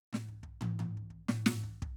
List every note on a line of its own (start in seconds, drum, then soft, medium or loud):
0.13 snare medium
0.13 floor tom medium
0.29 kick soft
0.43 kick soft
0.61 floor tom loud
0.61 high tom loud
0.79 floor tom medium
0.79 high tom medium
0.97 kick soft
1.10 kick soft
1.29 snare medium
1.29 floor tom loud
1.46 snare loud
1.46 floor tom medium
1.64 kick soft
1.82 kick medium